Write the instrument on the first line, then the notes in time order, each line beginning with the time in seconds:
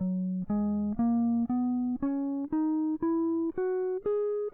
electric guitar
0.02 F#3
0.50 G#3
0.99 A#3
1.50 B3
2.03 C#4
2.53 D#4
3.02 E4
3.58 F#4
4.06 G#4